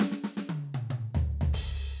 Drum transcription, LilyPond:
\new DrumStaff \drummode { \time 4/4 \tempo 4 = 120 sn16 sn16 sn16 sn16 tommh8 toml16 toml16 r16 tomfh8 tomfh16 <cymc bd>4 | }